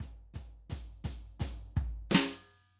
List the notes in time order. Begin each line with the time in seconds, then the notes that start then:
0.00 kick, snare, floor tom
0.34 kick, snare, floor tom
0.70 kick, snare, floor tom
1.04 kick, snare, floor tom
1.40 kick, snare, floor tom
1.76 kick, floor tom
2.10 snare, hi-hat pedal
2.15 snare